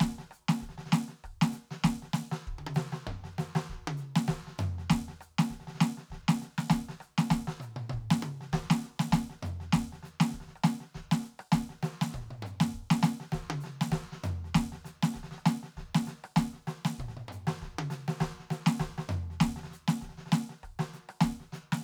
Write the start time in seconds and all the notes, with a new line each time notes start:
0.01 kick, snare
0.19 snare
0.32 cross-stick, hi-hat pedal
0.49 snare
0.61 kick, snare
0.70 snare
0.79 snare
0.86 snare
0.93 snare, hi-hat pedal
1.09 snare
1.25 kick, cross-stick
1.42 snare
1.53 snare, hi-hat pedal
1.72 snare
1.84 kick, snare
2.03 snare
2.14 snare, hi-hat pedal
2.32 snare
2.48 kick
2.54 kick
2.59 kick, high tom
2.67 high tom
2.75 snare, hi-hat pedal
2.93 snare
3.08 kick, mid tom
3.25 snare
3.39 snare, hi-hat pedal
3.56 snare
3.70 kick, snare
3.79 kick
3.88 high tom
3.98 snare, hi-hat pedal
4.16 snare
4.29 kick, snare
4.48 snare
4.59 floor tom, hi-hat pedal
4.79 snare
4.91 kick, snare
5.09 snare
5.21 cross-stick, hi-hat pedal
5.39 snare
5.51 kick, snare
5.61 snare
5.68 snare
5.75 snare
5.81 snare, hi-hat pedal
5.98 snare
6.11 kick, snare
6.29 snare
6.42 snare, hi-hat pedal
6.59 snare
6.70 kick, snare
6.89 snare
7.01 cross-stick, hi-hat pedal
7.19 snare
7.31 kick, snare
7.48 snare
7.61 cross-stick, hi-hat pedal, mid tom
7.77 mid tom
7.90 kick, mid tom
8.11 snare
8.23 hi-hat pedal, high tom
8.42 snare
8.53 kick, snare
8.71 snare
8.82 snare, hi-hat pedal
9.00 snare
9.12 kick, snare
9.30 snare
9.43 floor tom, hi-hat pedal
9.61 snare
9.73 kick, snare
9.93 snare
10.04 snare, hi-hat pedal
10.21 snare
10.31 kick, snare
10.41 snare
10.48 snare
10.56 cross-stick
10.64 snare, hi-hat pedal
10.81 snare
10.95 kick, snare
11.12 snare
11.22 snare, hi-hat pedal
11.40 cross-stick
11.53 kick, snare
11.70 snare
11.84 snare, hi-hat pedal
12.02 snare
12.12 kick, snare, mid tom
12.20 snare
12.31 mid tom
12.43 hi-hat pedal, mid tom
12.48 mid tom
12.61 snare
12.74 kick
12.91 snare
13.04 snare, hi-hat pedal
13.21 snare
13.33 kick, snare
13.51 high tom
13.61 snare, hi-hat pedal
13.82 snare
13.92 kick, snare
14.13 snare
14.24 floor tom, hi-hat pedal
14.45 snare
14.55 kick, snare
14.61 kick
14.73 snare
14.85 snare, hi-hat pedal
15.03 snare
15.14 kick, snare
15.24 snare
15.32 snare
15.39 cross-stick
15.46 snare, hi-hat pedal
15.64 snare
15.77 kick, snare
15.95 snare
16.06 snare, hi-hat pedal
16.25 cross-stick
16.37 kick, snare
16.54 snare
16.68 snare, hi-hat pedal
16.86 snare
16.99 kick, mid tom
17.09 snare
17.18 mid tom
17.29 hi-hat pedal, mid tom
17.48 snare
17.62 kick, snare
17.79 high tom
17.91 snare, hi-hat pedal
18.09 snare
18.21 kick, snare
18.40 snare
18.51 snare, hi-hat pedal
18.67 snare
18.80 kick, snare
18.99 snare
19.10 floor tom, hi-hat pedal
19.31 snare
19.41 kick, snare
19.57 snare
19.64 snare
19.71 snare, hi-hat pedal
19.89 snare
20.02 kick, snare
20.10 snare
20.16 snare
20.18 snare
20.27 snare
20.33 snare, hi-hat pedal
20.50 snare
20.64 kick, cross-stick
20.80 snare
20.94 snare, hi-hat pedal
21.10 cross-stick
21.21 kick, snare
21.41 snare
21.53 snare, hi-hat pedal
21.73 snare